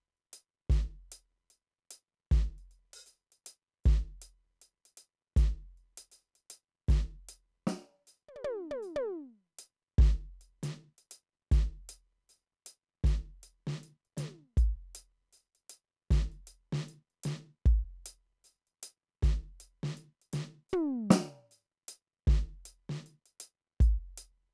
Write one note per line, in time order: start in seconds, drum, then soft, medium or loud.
0.17 closed hi-hat soft
0.33 open hi-hat medium
0.70 kick medium
0.70 snare medium
0.70 closed hi-hat soft
1.12 closed hi-hat medium
1.50 closed hi-hat soft
1.91 closed hi-hat medium
2.31 kick medium
2.31 snare medium
2.31 closed hi-hat soft
2.58 closed hi-hat soft
2.71 closed hi-hat soft
2.93 open hi-hat medium
3.06 hi-hat pedal medium
3.32 closed hi-hat soft
3.46 open hi-hat medium
3.84 kick medium
3.84 snare medium
3.84 closed hi-hat soft
3.84 hi-hat pedal soft
4.22 closed hi-hat medium
4.62 closed hi-hat soft
4.85 closed hi-hat soft
4.97 closed hi-hat medium
5.36 kick medium
5.36 snare medium
5.36 closed hi-hat medium
5.77 closed hi-hat soft
5.97 open hi-hat medium
6.12 hi-hat pedal medium
6.35 closed hi-hat soft
6.50 open hi-hat medium
6.88 kick medium
6.88 snare medium
6.88 closed hi-hat soft
6.88 hi-hat pedal soft
7.29 closed hi-hat medium
7.67 snare medium
7.67 closed hi-hat medium
8.07 hi-hat pedal medium
8.28 high tom soft
8.36 high tom soft
8.44 high tom loud
8.71 high tom medium
8.83 hi-hat pedal soft
8.96 high tom loud
9.59 closed hi-hat medium
9.98 kick medium
9.98 snare medium
10.41 closed hi-hat soft
10.63 closed hi-hat medium
10.63 snare medium
10.98 closed hi-hat soft
11.11 closed hi-hat medium
11.51 kick medium
11.51 snare medium
11.51 closed hi-hat soft
11.89 open hi-hat medium
12.29 closed hi-hat soft
12.29 hi-hat pedal medium
12.66 closed hi-hat medium
13.04 kick medium
13.04 snare medium
13.04 closed hi-hat soft
13.43 closed hi-hat medium
13.67 snare medium
13.83 closed hi-hat soft
14.05 closed hi-hat soft
14.16 closed hi-hat medium
14.16 snare medium
14.16 high tom soft
14.57 kick medium
14.57 closed hi-hat soft
14.95 open hi-hat medium
15.33 hi-hat pedal medium
15.37 closed hi-hat soft
15.55 closed hi-hat soft
15.70 closed hi-hat medium
16.11 kick medium
16.11 snare medium
16.11 closed hi-hat soft
16.32 closed hi-hat soft
16.47 closed hi-hat medium
16.73 snare medium
16.88 closed hi-hat soft
17.10 closed hi-hat soft
17.24 closed hi-hat medium
17.24 snare medium
17.66 kick medium
17.66 closed hi-hat soft
18.06 open hi-hat loud
18.44 closed hi-hat soft
18.44 hi-hat pedal medium
18.67 closed hi-hat soft
18.83 closed hi-hat loud
19.23 kick medium
19.23 snare medium
19.23 closed hi-hat soft
19.60 closed hi-hat medium
19.83 snare medium
19.97 closed hi-hat soft
20.22 closed hi-hat soft
20.33 open hi-hat medium
20.33 snare medium
20.69 floor tom loud
20.69 hi-hat pedal soft
21.11 closed hi-hat loud
21.11 snare loud
21.51 hi-hat pedal medium
21.88 closed hi-hat loud
22.27 kick medium
22.27 snare medium
22.65 closed hi-hat medium
22.89 snare medium
23.06 closed hi-hat soft
23.26 closed hi-hat soft
23.40 closed hi-hat loud
23.80 kick medium
23.80 closed hi-hat soft
24.18 open hi-hat medium